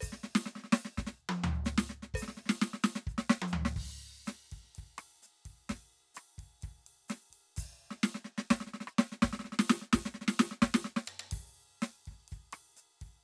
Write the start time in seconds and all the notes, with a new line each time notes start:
0.01 kick, hi-hat pedal, percussion
0.09 kick, snare
0.24 snare
0.36 snare
0.46 snare
0.56 snare
0.58 snare
0.64 snare
0.73 snare, hi-hat pedal
0.85 snare
0.98 kick, snare
1.07 snare
1.18 hi-hat pedal
1.29 hi-hat pedal, high tom
1.44 floor tom
1.54 snare
1.65 snare, hi-hat pedal
1.78 snare
1.86 snare, hi-hat pedal
2.03 snare
2.14 kick, hi-hat pedal, percussion
2.23 kick, snare
2.28 snare
2.37 snare
2.46 snare
2.50 snare
2.62 snare
2.74 snare
2.83 snare, hi-hat pedal
2.96 snare
3.07 kick, hi-hat pedal
3.16 kick, snare
3.30 snare
3.42 high tom
3.48 hi-hat pedal
3.53 floor tom
3.66 snare
3.75 kick, hi-hat pedal, crash
3.83 kick
3.90 cross-stick
4.26 snare, hi-hat pedal, ride
4.52 kick, ride
4.58 kick
4.64 snare
4.75 kick, hi-hat pedal, ride
4.84 kick
4.99 cross-stick, ride
5.23 snare, hi-hat pedal
5.46 kick, ride
5.51 kick
5.70 kick, snare, hi-hat pedal, ride
5.76 kick
5.93 ride
6.15 cross-stick, hi-hat pedal, ride
6.38 kick, ride
6.44 kick
6.61 kick, hi-hat pedal, ride
6.87 ride
7.09 snare, hi-hat pedal, ride
7.31 kick, ride
7.57 kick, hi-hat pedal, ride
7.67 kick
7.91 snare
8.04 snare
8.15 snare
8.38 snare
8.51 kick, snare
8.61 snare
8.67 snare
8.74 snare
8.81 snare
8.86 cross-stick, snare
8.99 snare
9.12 snare
9.23 kick, snare
9.33 snare
9.39 snare, hi-hat pedal
9.45 snare
9.53 snare
9.59 snare
9.68 snare, hi-hat pedal
9.82 snare
9.93 kick, snare
10.06 snare
10.10 hi-hat pedal
10.15 snare
10.22 snare
10.27 snare
10.40 snare, hi-hat pedal
10.51 snare
10.62 kick, snare
10.68 kick
10.75 snare
10.85 snare
10.97 snare
11.06 hi-hat pedal, floor tom
11.20 floor tom
11.32 kick, hi-hat pedal, ride
11.82 snare, hi-hat pedal, ride
12.06 kick, ride
12.11 kick, snare
12.18 snare
12.28 hi-hat pedal, ride
12.32 kick
12.53 cross-stick, ride
12.77 hi-hat pedal, ride
13.02 kick, ride
13.07 kick